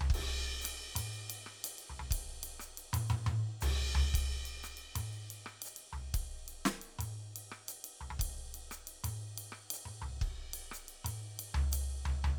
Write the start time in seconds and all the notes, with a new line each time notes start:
0.01 floor tom
0.10 kick
0.14 ride
0.61 cross-stick, hi-hat pedal
0.65 ride
0.95 mid tom, ride
1.13 hi-hat pedal
1.30 ride
1.46 cross-stick
1.64 hi-hat pedal, ride
1.78 ride
1.90 floor tom
1.99 floor tom
2.10 kick, hi-hat pedal, ride
2.43 ride
2.60 cross-stick, hi-hat pedal
2.77 ride
2.93 mid tom, ride
3.08 hi-hat pedal, mid tom
3.26 mid tom
3.61 floor tom, hi-hat pedal, ride
3.95 floor tom
4.14 kick, ride
4.45 ride
4.63 cross-stick, hi-hat pedal
4.77 ride
4.95 mid tom, ride
5.12 hi-hat pedal
5.30 ride
5.46 cross-stick
5.62 hi-hat pedal, ride
5.76 ride
5.93 floor tom
6.14 kick, ride
6.48 ride
6.65 snare, hi-hat pedal
6.82 ride
6.99 mid tom, ride
7.36 ride
7.52 cross-stick
7.68 hi-hat pedal, ride
7.84 ride
8.01 floor tom
8.10 floor tom
8.19 kick, ride
8.54 ride
8.71 cross-stick, hi-hat pedal
8.87 ride
9.04 mid tom, ride
9.38 ride
9.52 cross-stick
9.70 hi-hat pedal, ride
9.85 mid tom
10.02 floor tom
10.21 kick, ride
10.37 ride
10.53 ride
10.72 cross-stick, hi-hat pedal
10.88 ride
11.04 mid tom, ride
11.39 ride
11.54 floor tom
11.72 hi-hat pedal, ride
12.05 floor tom
12.24 floor tom